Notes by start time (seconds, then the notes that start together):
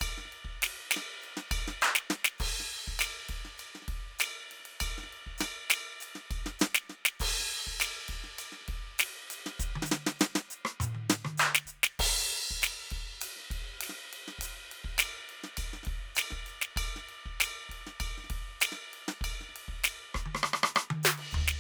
0.01 kick, hi-hat pedal, ride bell
0.08 kick
0.18 snare
0.26 snare
0.33 ride
0.46 kick
0.63 snare, hi-hat pedal, ride
0.92 snare, ride bell
0.97 snare
1.23 hi-hat pedal, ride
1.38 snare
1.49 kick, hi-hat pedal, ride bell
1.59 kick
1.64 kick
1.69 snare
1.82 percussion, hi-hat pedal
1.96 snare
2.11 snare
2.25 snare
2.39 kick, hi-hat pedal, crash
2.47 kick
2.52 kick
2.61 snare
2.88 kick
2.94 kick
3.00 snare, hi-hat pedal, ride bell
3.30 kick, ride
3.36 kick
3.46 snare
3.58 hi-hat pedal, ride bell
3.76 snare
3.83 snare
3.89 kick, ride
3.96 kick
4.20 snare, hi-hat pedal, ride bell
4.52 snare, ride
4.60 snare
4.66 ride
4.81 kick, hi-hat pedal, ride bell
4.89 kick
4.99 snare
5.04 snare
5.13 ride
5.27 kick
5.39 snare, hi-hat pedal, ride bell
5.71 snare, ride bell
6.01 hi-hat pedal, ride
6.16 snare
6.32 kick, ride bell
6.38 kick
6.47 snare
6.60 snare, hi-hat pedal
6.75 snare
6.90 snare
7.06 snare
7.20 kick, hi-hat pedal, crash
7.32 kick
7.41 snare
7.68 kick
7.81 snare, hi-hat pedal, ride bell
8.09 kick, ride
8.15 kick
8.25 snare
8.39 hi-hat pedal, ride bell
8.53 snare
8.62 snare
8.69 kick, ride
8.76 kick
8.99 snare, hi-hat pedal, ride
9.31 hi-hat pedal, ride
9.47 snare
9.60 kick, hi-hat pedal
9.67 kick
9.76 high tom
9.83 snare, hi-hat pedal
9.92 snare
10.07 snare
10.20 snare, hi-hat pedal
10.36 snare
10.51 hi-hat pedal
10.66 cross-stick
10.81 hi-hat pedal, mid tom
10.96 high tom
11.10 snare, hi-hat pedal
11.26 cross-stick, high tom
11.38 percussion, hi-hat pedal
11.56 snare
11.66 kick, hi-hat pedal
11.84 snare
12.00 kick, hi-hat pedal, crash
12.08 kick, snare
12.11 kick
12.52 kick
12.63 snare, hi-hat pedal, ride bell
12.92 kick, ride
12.99 kick
13.22 hi-hat pedal, ride
13.37 snare
13.41 snare
13.51 kick, ride
13.58 kick
13.82 snare, ride
13.90 snare
14.14 ride
14.29 snare
14.39 kick, hi-hat pedal, ride
14.72 ride
14.85 kick
14.99 snare, hi-hat pedal, ride bell
15.30 ride
15.45 snare
15.58 kick, hi-hat pedal, ride bell
15.66 kick
15.74 snare
15.84 kick, snare, ride
15.95 kick
16.16 snare, hi-hat pedal, ride bell
16.31 kick, snare
16.47 hi-hat pedal, ride
16.62 snare
16.77 kick, hi-hat pedal, ride bell
16.84 kick
16.97 snare
17.10 ride
17.27 kick
17.41 snare, hi-hat pedal, ride bell
17.70 kick, ride
17.88 snare
18.01 kick, ride bell
18.08 kick
18.18 snare
18.25 snare
18.31 kick, ride
18.38 kick
18.40 kick
18.61 snare, hi-hat pedal, ride bell
18.73 snare
18.94 ride
19.09 snare
19.22 kick, hi-hat pedal, ride bell
19.29 kick
19.42 snare
19.50 snare
19.57 ride
19.69 kick
19.75 kick
19.85 snare, hi-hat pedal, ride bell
20.15 kick, cross-stick
20.21 kick, hi-hat pedal
20.27 high tom
20.36 cross-stick
20.44 cross-stick
20.54 cross-stick
20.64 cross-stick
20.76 cross-stick, hi-hat pedal
20.91 high tom
21.04 snare, hi-hat pedal
21.19 ride
21.32 kick, floor tom, hi-hat pedal
21.49 snare